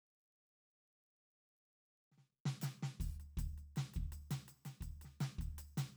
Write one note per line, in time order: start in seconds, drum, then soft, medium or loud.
2.12 snare soft
2.18 snare soft
2.45 snare medium
2.61 snare soft
2.61 percussion medium
2.83 snare soft
3.00 kick soft
3.00 percussion soft
3.20 percussion soft
3.37 kick soft
3.37 percussion medium
3.58 percussion soft
3.76 snare medium
3.76 percussion soft
3.94 kick soft
3.94 percussion soft
4.12 percussion soft
4.31 snare soft
4.31 percussion medium
4.48 percussion soft
4.65 snare soft
4.65 percussion soft
4.81 kick soft
4.81 percussion soft
5.01 snare soft
5.01 percussion soft
5.20 snare medium
5.20 percussion soft
5.38 kick soft
5.38 percussion soft
5.58 percussion medium
5.77 snare medium
5.77 percussion medium